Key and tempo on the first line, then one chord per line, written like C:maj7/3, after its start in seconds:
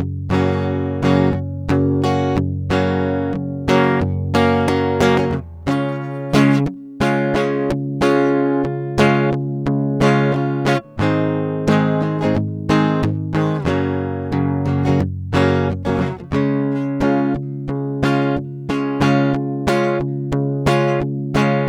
C# major, 90 BPM
0.00 C#:maj
0.35 F#:maj
5.68 C#:maj
11.02 G#:maj
13.69 F#:maj
16.35 C#:maj